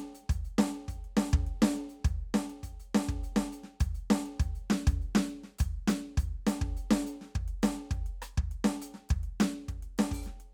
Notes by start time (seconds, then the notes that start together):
0.01 closed hi-hat
0.16 closed hi-hat
0.30 closed hi-hat, kick
0.45 closed hi-hat
0.59 snare
0.67 snare
0.75 closed hi-hat
0.89 closed hi-hat, kick
1.05 closed hi-hat
1.18 snare
1.32 kick, closed hi-hat
1.47 closed hi-hat
1.63 snare
1.77 closed hi-hat
1.90 closed hi-hat
2.05 closed hi-hat, kick
2.20 closed hi-hat
2.35 snare
2.43 snare
2.50 closed hi-hat
2.64 closed hi-hat, kick
2.81 closed hi-hat
2.95 snare
3.09 kick, snare, closed hi-hat
3.24 closed hi-hat
3.37 snare
3.53 closed hi-hat
3.64 snare
3.81 closed hi-hat, kick
3.95 closed hi-hat
4.11 snare
4.26 closed hi-hat
4.40 closed hi-hat, kick
4.56 closed hi-hat
4.71 snare
4.88 closed hi-hat, kick
5.02 closed hi-hat
5.16 snare
5.24 snare
5.30 closed hi-hat
5.44 snare
5.48 snare
5.59 closed hi-hat, kick
5.88 closed hi-hat, snare
6.18 closed hi-hat, kick
6.48 closed hi-hat, snare
6.62 kick
6.78 closed hi-hat
6.92 snare
7.07 closed hi-hat
7.22 snare
7.25 snare
7.36 kick, closed hi-hat
7.49 closed hi-hat
7.64 closed hi-hat, snare
7.76 snare
7.92 kick, closed hi-hat
8.07 closed hi-hat
8.23 closed hi-hat, cross-stick
8.38 kick
8.52 closed hi-hat
8.65 snare, closed hi-hat
8.80 closed hi-hat, snare
8.95 snare
9.10 kick, closed hi-hat
9.24 closed hi-hat
9.41 closed hi-hat, snare
9.55 snare
9.69 kick, closed hi-hat
9.83 closed hi-hat
9.99 snare, closed hi-hat
10.12 open hi-hat, kick
10.24 snare, hi-hat pedal
10.41 closed hi-hat